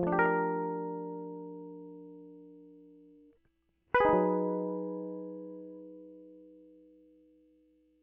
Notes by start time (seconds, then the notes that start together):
0.00 F3
0.05 A3 D4
0.13 G4
0.20 A#4
3.95 B4
4.01 G#4
4.06 D#4
4.11 F#3 A3